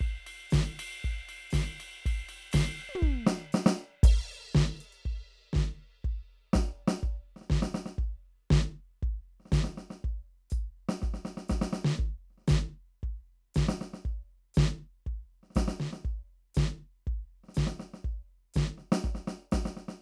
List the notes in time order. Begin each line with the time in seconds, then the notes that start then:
0.01 kick, ride
0.27 ride bell
0.51 kick, snare, hi-hat pedal, ride
0.79 ride bell
1.04 kick, ride
1.29 ride bell
1.51 kick, snare, hi-hat pedal, ride
1.80 ride bell
2.06 kick, ride
2.29 ride bell
2.52 kick, snare, hi-hat pedal, ride
2.89 high tom
2.95 floor tom
3.02 kick
3.27 snare
3.52 snare, hi-hat pedal
3.66 snare
4.03 open hi-hat, kick, crash
4.54 kick, snare, hi-hat pedal
4.81 closed hi-hat
4.93 closed hi-hat
5.06 kick
5.53 kick, snare
5.58 snare
6.05 kick
6.54 kick, snare
6.88 snare
7.03 kick
7.36 snare
7.42 snare
7.50 kick, snare
7.62 snare
7.75 snare
7.86 snare
7.98 kick
8.51 kick, snare
9.03 kick
9.40 snare
9.46 snare
9.52 kick, snare, hi-hat pedal
9.64 snare
9.78 snare
9.91 snare
10.04 kick
10.50 kick, hi-hat pedal
10.89 snare
11.02 kick, snare
11.14 snare
11.25 snare
11.37 snare
11.49 kick, snare, hi-hat pedal
11.62 snare
11.73 snare
11.85 snare
11.99 kick
12.31 snare
12.38 snare
12.42 snare
12.48 kick, snare, hi-hat pedal
13.03 kick
13.55 kick, snare, hi-hat pedal
13.69 snare
13.81 snare
13.94 snare
14.01 hi-hat pedal
14.05 kick
14.54 kick, snare, hi-hat pedal
15.07 kick
15.43 snare
15.51 snare
15.55 kick, snare, hi-hat pedal
15.68 snare
15.80 snare
15.93 snare
16.05 kick
16.55 kick, snare, hi-hat pedal
17.07 kick
17.44 snare
17.49 snare
17.55 kick, snare, hi-hat pedal
17.67 snare
17.80 snare
17.94 snare
18.05 kick
18.54 kick, snare, hi-hat pedal
18.78 snare
18.92 snare
19.04 kick, snare
19.15 snare
19.28 snare
19.52 kick, snare, hi-hat pedal
19.66 snare
19.77 snare
19.89 snare